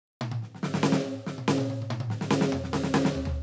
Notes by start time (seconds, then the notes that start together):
0.21 high tom
0.32 high tom
0.43 snare
0.55 snare
0.63 snare
0.74 snare
0.83 snare
0.92 snare
1.05 high tom
1.16 high tom
1.27 snare
1.38 high tom
1.48 snare
1.58 high tom
1.70 high tom
1.82 high tom
1.90 high tom
2.00 high tom
2.10 snare
2.21 snare
2.31 snare
2.41 snare
2.52 mid tom
2.64 snare
2.73 snare
2.84 snare
2.94 snare
3.05 snare
3.15 floor tom
3.25 floor tom